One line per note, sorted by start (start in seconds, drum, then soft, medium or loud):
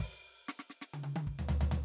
0.02 open hi-hat loud
0.02 kick soft
0.48 snare medium
0.59 snare medium
0.70 snare soft
0.81 snare medium
0.93 high tom medium
1.03 high tom medium
1.16 high tom medium
1.27 kick soft
1.39 floor tom medium
1.48 floor tom loud
1.61 floor tom loud
1.71 floor tom loud